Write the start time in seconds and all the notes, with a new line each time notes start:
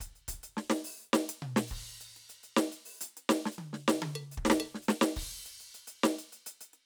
0.01 closed hi-hat, kick
0.16 closed hi-hat
0.29 closed hi-hat, kick
0.35 kick
0.44 closed hi-hat
0.52 open hi-hat
0.58 snare
0.70 snare
0.74 hi-hat pedal
0.85 open hi-hat
0.99 open hi-hat
1.03 hi-hat pedal
1.14 snare
1.30 closed hi-hat
1.43 mid tom
1.57 snare
1.68 kick, hi-hat pedal
1.73 crash
1.77 kick
1.89 closed hi-hat
2.01 closed hi-hat
2.17 closed hi-hat
2.30 closed hi-hat
2.44 closed hi-hat
2.57 snare
2.73 closed hi-hat
2.86 open hi-hat
2.99 closed hi-hat, hi-hat pedal
3.18 closed hi-hat
3.30 snare
3.46 snare
3.52 hi-hat pedal
3.59 high tom
3.74 snare
3.89 snare
4.03 high tom
4.16 percussion
4.32 hi-hat pedal
4.38 kick
4.45 kick, snare
4.48 kick, snare
4.61 percussion
4.75 snare
4.83 hi-hat pedal
4.89 snare
5.02 snare
5.09 cross-stick, hi-hat pedal
5.17 kick, crash
5.24 kick
5.46 closed hi-hat
5.61 closed hi-hat
5.75 closed hi-hat
5.88 closed hi-hat
6.04 snare
6.19 closed hi-hat
6.33 closed hi-hat
6.47 open hi-hat
6.61 closed hi-hat
6.74 closed hi-hat